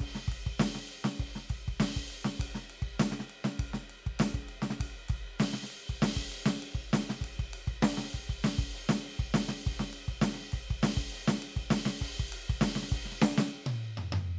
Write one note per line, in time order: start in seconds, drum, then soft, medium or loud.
0.01 kick medium
0.01 ride medium
0.15 snare medium
0.28 kick medium
0.28 ride medium
0.47 kick medium
0.60 snare loud
0.60 ride medium
0.75 snare soft
0.89 ride medium
1.05 snare loud
1.20 kick medium
1.20 ride medium
1.36 snare medium
1.50 kick medium
1.50 ride medium
1.68 kick medium
1.80 snare loud
1.80 ride loud
1.97 kick medium
2.11 ride medium
2.25 snare medium
2.40 kick medium
2.40 ride loud
2.55 snare medium
2.70 ride medium
2.83 kick medium
3.00 snare loud
3.00 ride loud
3.12 snare medium
3.20 snare medium
3.30 ride medium
3.45 snare medium
3.60 kick medium
3.60 ride loud
3.74 snare medium
3.90 ride medium
4.07 kick medium
4.20 snare loud
4.20 ride loud
4.35 kick medium
4.49 ride medium
4.62 snare medium
4.71 snare medium
4.81 kick medium
4.81 ride loud
5.09 kick medium
5.09 ride medium
5.40 snare loud
5.40 ride loud
5.54 snare medium
5.63 snare soft
5.71 ride medium
5.90 kick medium
6.03 snare loud
6.03 ride loud
6.17 kick medium
6.32 ride medium
6.46 snare loud
6.63 ride medium
6.75 kick medium
6.94 snare loud
6.94 ride medium
7.10 snare medium
7.22 kick soft
7.22 ride medium
7.40 kick medium
7.54 ride loud
7.68 kick medium
7.83 snare loud
7.83 ride loud
7.98 snare medium
8.04 snare soft
8.14 kick soft
8.14 ride medium
8.30 kick medium
8.44 snare loud
8.44 ride loud
8.59 kick medium
8.75 ride medium
8.89 snare loud
9.04 ride medium
9.20 kick medium
9.35 snare loud
9.35 ride medium
9.49 snare medium
9.66 kick medium
9.66 ride medium
9.80 snare medium
9.94 ride medium
10.09 kick medium
10.22 snare loud
10.22 ride medium
10.35 snare soft
10.42 snare soft
10.53 kick medium
10.53 ride medium
10.71 kick medium
10.83 snare loud
10.83 ride loud
10.97 kick medium
11.12 ride medium
11.28 snare loud
11.43 ride loud
11.57 kick medium
11.71 snare loud
11.71 ride loud
11.86 snare loud
12.01 kick medium
12.01 ride loud
12.20 kick medium
12.33 ride loud
12.50 kick medium
12.62 snare loud
12.62 ride loud
12.76 snare medium
12.83 snare soft
12.92 kick medium
12.92 ride medium
13.06 snare soft
13.12 snare soft
13.22 snare loud
13.22 hi-hat pedal loud
13.38 snare loud
13.67 high tom loud
13.98 mid tom loud
14.13 mid tom loud